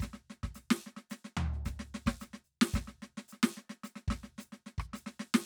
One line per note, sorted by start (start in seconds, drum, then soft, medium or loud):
0.01 kick soft
0.01 snare medium
0.01 hi-hat pedal medium
0.14 snare soft
0.30 snare soft
0.44 kick soft
0.44 snare soft
0.55 snare soft
0.55 hi-hat pedal medium
0.71 snare loud
0.87 snare soft
0.97 snare soft
1.11 snare medium
1.11 hi-hat pedal medium
1.25 snare soft
1.37 floor tom loud
1.54 snare soft
1.66 kick soft
1.66 snare soft
1.66 hi-hat pedal medium
1.80 snare soft
1.95 snare medium
2.07 kick medium
2.07 snare medium
2.21 snare soft
2.21 hi-hat pedal medium
2.34 snare soft
2.45 hi-hat pedal soft
2.62 snare loud
2.73 kick medium
2.73 snare medium
2.73 hi-hat pedal medium
2.88 snare soft
3.03 snare soft
3.18 snare soft
3.29 hi-hat pedal medium
3.33 snare soft
3.44 snare loud
3.57 snare soft
3.70 snare soft
3.84 snare soft
3.84 hi-hat pedal medium
3.96 snare soft
4.08 kick medium
4.08 snare medium
4.24 snare soft
4.39 snare soft
4.39 hi-hat pedal medium
4.53 snare soft
4.67 snare soft
4.79 kick medium
4.79 cross-stick medium
4.94 snare soft
4.94 hi-hat pedal medium
5.07 snare medium
5.20 snare medium
5.35 snare loud